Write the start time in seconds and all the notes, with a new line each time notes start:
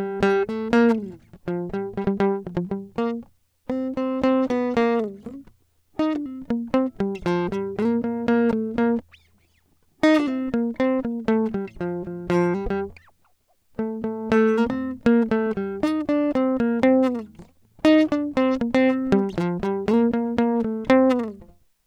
0.00 G3
0.24 G3
0.51 A3
0.75 A#3
1.49 F3
1.76 G3
1.99 G3
2.09 G3
2.22 G3
2.48 F3
2.59 F3
2.73 G3
3.00 A#3
3.71 C4
3.99 C4
4.25 C4
4.52 B3
4.79 A#3
5.01 G#3
5.28 C4
6.01 D#4
6.15 D4
6.28 C4
6.52 A#3
6.75 C4
7.02 G3
7.28 F3
7.54 G3
7.80 A#3
8.06 A#3
8.30 A#3
8.52 A3
8.80 A#3
10.05 D#4
10.17 D4
10.28 C4
10.55 A#3
10.81 C4
11.07 A#3
11.30 A3
11.56 G3
11.82 F3
12.09 F3
12.31 F3
12.56 G3
12.72 G3
13.81 A3
14.06 A3
14.33 A3
14.60 A#3
14.72 C4
15.08 A#3
15.33 A3
15.59 G3
15.85 D#4
16.11 D4
16.37 C4
16.62 A#3
16.82 G3 C4
17.86 D#4
18.14 D4
18.39 C4
18.63 A#3
18.76 C4
19.14 G3
19.40 F3
19.65 G3
19.90 A#3
20.15 A#3
20.40 A#3
20.63 A3
20.91 C4